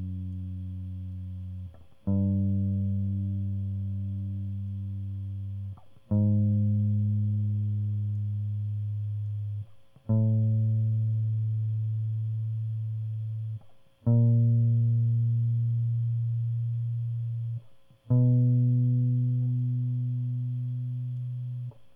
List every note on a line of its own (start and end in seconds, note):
2.10 5.77 G2
6.14 9.66 G#2
10.11 13.60 A2
14.09 17.61 A#2
18.12 21.74 B2